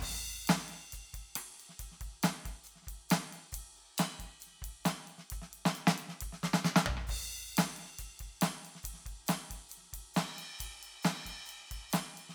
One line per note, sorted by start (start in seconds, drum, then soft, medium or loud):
0.01 kick soft
0.01 hi-hat pedal soft
0.01 crash loud
0.09 kick soft
0.12 kick soft
0.19 snare soft
0.48 snare loud
0.48 hi-hat pedal medium
0.48 ride medium
0.58 snare soft
0.69 ride soft
0.79 snare soft
0.86 snare soft
0.93 kick soft
0.93 hi-hat pedal medium
0.93 ride medium
0.99 snare soft
1.14 kick soft
1.14 ride medium
1.36 cross-stick medium
1.36 hi-hat pedal soft
1.36 ride loud
1.60 ride soft
1.70 snare soft
1.80 kick soft
1.80 hi-hat pedal soft
1.80 ride medium
1.92 snare soft
2.01 kick soft
2.01 ride medium
2.08 kick soft
2.23 snare loud
2.23 hi-hat pedal medium
2.23 ride loud
2.46 kick soft
2.46 ride medium
2.52 kick soft
2.64 hi-hat pedal medium
2.64 ride soft
2.76 snare soft
2.83 snare soft
2.88 kick soft
2.88 ride medium
2.93 kick soft
3.10 snare loud
3.10 hi-hat pedal medium
3.10 ride loud
3.33 ride soft
3.44 snare soft
3.52 kick soft
3.52 snare soft
3.52 hi-hat pedal medium
3.52 ride medium
3.77 ride soft
3.98 snare loud
3.98 hi-hat pedal medium
3.98 ride bell loud
4.20 kick soft
4.20 ride medium
4.41 hi-hat pedal soft
4.41 ride medium
4.47 snare soft
4.51 snare soft
4.54 snare soft
4.59 kick soft
4.59 snare soft
4.65 kick soft
4.65 ride medium
4.85 snare loud
4.85 hi-hat pedal medium
4.85 ride medium
5.08 ride soft
5.19 snare soft
5.31 kick soft
5.31 hi-hat pedal soft
5.31 ride medium
5.39 kick soft
5.39 snare soft
5.54 ride medium
5.66 snare loud
5.75 hi-hat pedal medium
5.75 ride medium
5.88 snare loud
5.99 ride medium
6.09 snare soft
6.21 kick soft
6.21 hi-hat pedal medium
6.21 ride medium
6.29 kick soft
6.33 snare soft
6.44 snare loud
6.54 snare loud
6.65 snare loud
6.65 hi-hat pedal medium
6.77 snare loud
6.86 kick soft
6.86 floor tom loud
6.98 cross-stick medium
7.08 kick medium
7.08 hi-hat pedal medium
7.08 crash loud
7.23 snare soft
7.27 snare soft
7.58 snare loud
7.58 hi-hat pedal medium
7.58 ride loud
7.77 ride soft
7.86 snare soft
7.93 snare soft
7.99 kick soft
7.99 hi-hat pedal medium
7.99 ride medium
8.03 snare soft
8.07 snare soft
8.18 kick soft
8.18 snare soft
8.18 ride medium
8.29 kick soft
8.42 snare loud
8.42 hi-hat pedal medium
8.42 ride loud
8.66 ride soft
8.76 snare soft
8.84 kick soft
8.84 hi-hat pedal medium
8.84 ride medium
8.91 kick soft
8.91 snare soft
8.99 snare soft
9.03 kick soft
9.03 snare soft
9.07 ride soft
9.12 kick soft
9.27 snare medium
9.27 hi-hat pedal medium
9.27 ride loud
9.51 kick soft
9.51 ride medium
9.70 hi-hat pedal medium
9.70 ride medium
9.78 snare soft
9.82 snare soft
9.86 snare soft
9.93 kick soft
9.93 ride medium
10.15 snare loud
10.15 hi-hat pedal medium
10.15 ride medium
10.39 ride medium
10.59 kick soft
10.59 hi-hat pedal soft
10.59 ride medium
10.66 kick soft
10.84 ride medium
11.03 snare loud
11.03 hi-hat pedal medium
11.03 ride medium
11.26 kick soft
11.26 ride medium
11.46 hi-hat pedal medium
11.46 ride medium
11.62 snare soft
11.72 kick soft
11.72 ride medium
11.91 snare medium
11.91 hi-hat pedal soft
11.91 ride loud
12.18 ride soft
12.30 snare soft